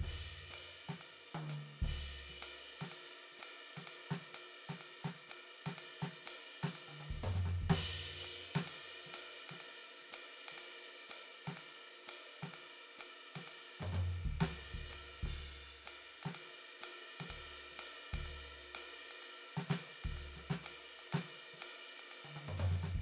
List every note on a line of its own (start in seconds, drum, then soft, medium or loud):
0.01 kick soft
0.01 crash soft
0.01 ride medium
0.50 hi-hat pedal loud
0.50 ride medium
0.89 snare soft
0.89 ride medium
0.98 hi-hat pedal soft
0.98 ride medium
1.35 high tom medium
1.50 hi-hat pedal loud
1.50 ride medium
1.82 kick medium
1.82 ride medium
2.29 snare soft
2.42 hi-hat pedal loud
2.42 ride loud
2.81 snare soft
2.81 ride medium
2.90 hi-hat pedal soft
2.90 ride medium
3.32 snare soft
3.39 hi-hat pedal loud
3.43 ride loud
3.77 snare soft
3.77 ride medium
3.87 hi-hat pedal soft
3.87 ride medium
4.11 snare medium
4.34 hi-hat pedal loud
4.34 ride loud
4.69 snare soft
4.69 ride medium
4.79 hi-hat pedal soft
4.79 ride medium
5.05 snare medium
5.29 hi-hat pedal loud
5.29 ride loud
5.66 snare medium
5.66 ride medium
5.79 ride medium
6.02 snare medium
6.26 hi-hat pedal loud
6.26 ride loud
6.46 hi-hat pedal soft
6.63 snare medium
6.63 ride medium
6.76 ride medium
6.88 high tom soft
7.00 high tom soft
7.11 kick soft
7.24 floor tom medium
7.24 hi-hat pedal loud
7.34 snare soft
7.46 snare soft
7.62 kick soft
7.70 snare medium
7.70 ride loud
8.12 snare soft
8.21 hi-hat pedal loud
8.21 ride medium
8.55 snare medium
8.55 ride loud
8.68 hi-hat pedal soft
8.68 ride medium
9.06 snare soft
9.14 hi-hat pedal loud
9.14 ride loud
9.50 snare soft
9.50 ride medium
9.61 ride medium
10.01 snare soft
10.10 snare soft
10.10 hi-hat pedal loud
10.14 ride loud
10.49 snare soft
10.49 ride loud
10.58 ride medium
11.10 hi-hat pedal loud
11.10 ride medium
11.47 snare soft
11.47 ride medium
11.56 hi-hat pedal soft
11.56 ride medium
12.08 hi-hat pedal loud
12.08 ride medium
12.43 snare soft
12.43 ride medium
12.53 hi-hat pedal soft
12.53 ride medium
12.99 hi-hat pedal loud
12.99 ride loud
13.36 snare soft
13.36 ride loud
13.44 hi-hat pedal soft
13.44 ride medium
13.80 snare soft
13.80 floor tom medium
13.93 snare soft
13.93 floor tom medium
13.93 hi-hat pedal medium
14.25 kick medium
14.37 hi-hat pedal soft
14.37 ride loud
14.41 snare medium
14.74 kick soft
14.90 hi-hat pedal loud
14.90 ride medium
15.23 kick soft
15.23 crash medium
15.86 hi-hat pedal loud
15.86 ride loud
16.23 snare medium
16.23 ride medium
16.31 hi-hat pedal soft
16.31 ride loud
16.82 hi-hat pedal loud
16.82 ride loud
17.20 snare soft
17.20 ride loud
17.30 kick soft
17.30 hi-hat pedal soft
17.30 ride loud
17.71 snare soft
17.79 hi-hat pedal loud
17.79 ride loud
18.14 kick soft
18.14 ride loud
18.25 hi-hat pedal soft
18.25 ride medium
18.75 hi-hat pedal loud
18.75 ride loud
19.11 ride medium
19.23 hi-hat pedal soft
19.23 ride medium
19.57 snare medium
19.68 snare medium
19.68 hi-hat pedal medium
19.68 ride loud
19.88 hi-hat pedal soft
20.04 kick soft
20.04 ride medium
20.17 ride medium
20.36 snare soft
20.50 snare medium
20.64 hi-hat pedal loud
20.64 ride loud
20.84 hi-hat pedal soft
20.99 ride medium
21.09 hi-hat pedal soft
21.13 snare medium
21.13 ride loud
21.53 snare soft
21.60 hi-hat pedal medium
21.60 ride loud
22.00 ride medium
22.06 hi-hat pedal soft
22.12 ride medium
22.25 high tom soft
22.36 high tom soft
22.49 floor tom medium
22.57 floor tom medium
22.57 hi-hat pedal loud
22.71 snare soft
22.83 snare soft
22.95 kick soft